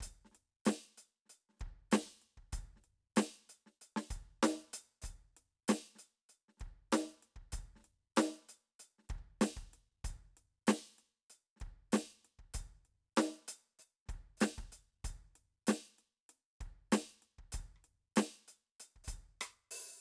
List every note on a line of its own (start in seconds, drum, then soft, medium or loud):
0.01 closed hi-hat medium
0.01 kick soft
0.06 snare soft
0.25 snare soft
0.32 snare soft
0.32 closed hi-hat soft
0.66 closed hi-hat medium
0.66 snare loud
0.98 closed hi-hat soft
1.26 closed hi-hat soft
1.26 snare soft
1.50 snare soft
1.53 snare soft
1.57 snare soft
1.57 closed hi-hat soft
1.61 kick soft
1.92 closed hi-hat medium
1.92 snare loud
2.07 snare soft
2.22 closed hi-hat soft
2.38 kick soft
2.53 closed hi-hat medium
2.53 kick soft
2.77 snare soft
2.85 closed hi-hat soft
3.17 closed hi-hat medium
3.17 snare loud
3.50 closed hi-hat soft
3.67 snare soft
3.82 closed hi-hat soft
3.97 snare medium
4.11 closed hi-hat soft
4.11 kick soft
4.43 closed hi-hat medium
4.43 snare loud
4.74 open hi-hat medium
5.02 closed hi-hat soft
5.02 kick soft
5.02 hi-hat pedal medium
5.37 closed hi-hat soft
5.69 closed hi-hat medium
5.69 snare loud
5.96 closed hi-hat soft
5.96 snare soft
6.30 closed hi-hat soft
6.49 snare soft
6.58 kick soft
6.58 snare soft
6.58 closed hi-hat soft
6.93 closed hi-hat medium
6.93 snare medium
7.23 closed hi-hat soft
7.36 kick soft
7.53 closed hi-hat medium
7.53 kick soft
7.76 snare soft
7.79 snare soft
7.84 snare soft
7.84 closed hi-hat soft
8.17 closed hi-hat medium
8.17 snare loud
8.49 closed hi-hat soft
8.80 closed hi-hat soft
8.99 snare soft
9.04 snare soft
9.10 kick soft
9.10 closed hi-hat soft
9.19 kick soft
9.42 closed hi-hat medium
9.42 snare loud
9.57 kick soft
9.74 closed hi-hat soft
10.05 closed hi-hat medium
10.05 kick soft
10.11 kick soft
10.14 kick soft
10.38 closed hi-hat soft
10.68 closed hi-hat medium
10.68 snare loud
10.99 closed hi-hat soft
11.30 closed hi-hat soft
11.57 snare soft
11.57 closed hi-hat soft
11.62 kick soft
11.93 closed hi-hat medium
11.93 snare loud
12.25 closed hi-hat soft
12.39 kick soft
12.54 closed hi-hat medium
12.54 kick soft
12.65 kick soft
12.86 closed hi-hat soft
13.17 closed hi-hat medium
13.17 snare loud
13.49 open hi-hat medium
13.79 hi-hat pedal soft
14.06 kick soft
14.06 snare soft
14.10 closed hi-hat soft
14.38 closed hi-hat medium
14.38 hi-hat pedal soft
14.42 snare medium
14.58 kick soft
14.58 snare soft
14.73 closed hi-hat soft
15.05 closed hi-hat medium
15.05 kick soft
15.36 closed hi-hat soft
15.68 closed hi-hat medium
15.68 snare loud
15.99 closed hi-hat soft
16.30 closed hi-hat soft
16.61 kick soft
16.61 closed hi-hat soft
16.93 closed hi-hat medium
16.93 snare loud
17.23 closed hi-hat soft
17.39 kick soft
17.53 closed hi-hat medium
17.53 kick soft
17.77 cross-stick soft
17.85 closed hi-hat soft
18.17 closed hi-hat medium
18.17 snare loud
18.48 closed hi-hat soft
18.80 closed hi-hat medium
18.96 kick soft
19.05 closed hi-hat medium
19.05 kick soft
19.05 hi-hat pedal soft
19.41 closed hi-hat medium
19.41 cross-stick medium
19.71 open hi-hat medium